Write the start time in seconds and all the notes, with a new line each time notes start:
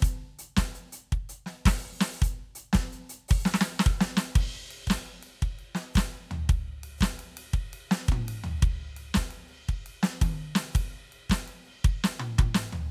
0.01 closed hi-hat, kick, hi-hat pedal
0.39 closed hi-hat
0.57 kick, snare
0.75 closed hi-hat
0.93 closed hi-hat
1.13 kick
1.30 closed hi-hat
1.47 snare
1.66 open hi-hat, kick, snare
2.01 open hi-hat, snare
2.19 kick, hi-hat pedal
2.24 closed hi-hat
2.56 closed hi-hat
2.73 kick, snare
2.93 closed hi-hat
3.10 closed hi-hat
3.29 open hi-hat, kick
3.46 snare
3.54 snare
3.61 snare
3.80 snare
3.87 kick
4.01 snare
4.17 snare
4.36 kick, ride
4.71 ride
4.88 kick, snare, hi-hat pedal
5.06 ride
5.23 ride
5.43 kick
5.59 ride
5.75 snare, ride
5.94 kick, snare, hi-hat pedal, ride
6.31 floor tom
6.50 kick, ride
6.84 ride
6.98 kick, hi-hat pedal
7.03 snare
7.20 ride
7.38 ride
7.54 kick
7.74 ride
7.92 snare
8.07 kick, hi-hat pedal
8.12 mid tom
8.29 ride
8.44 floor tom
8.63 kick, ride
8.97 ride
9.15 kick, snare, hi-hat pedal
9.31 ride
9.49 ride
9.67 kick, ride
9.87 ride
10.03 snare
10.22 kick, high tom, ride
10.56 snare, ride
10.73 kick, hi-hat pedal, ride
11.13 ride
11.30 kick, snare
11.48 ride
11.66 ride
11.84 kick, ride
12.04 snare
12.20 mid tom
12.39 kick, mid tom
12.55 snare
12.73 floor tom